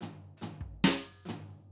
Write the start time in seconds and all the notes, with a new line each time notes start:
0.02 floor tom, high tom
0.37 hi-hat pedal
0.41 floor tom, high tom
0.61 kick
0.84 snare
0.87 snare
1.25 closed hi-hat, floor tom, high tom